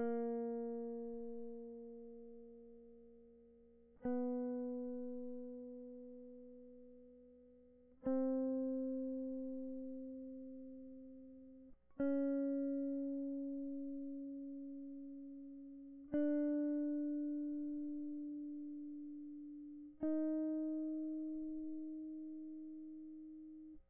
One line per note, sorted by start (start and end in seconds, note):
0.00 2.84 A#3
4.06 7.19 B3
8.07 11.71 C4
12.01 16.14 C#4
16.15 19.96 D4
20.04 23.78 D#4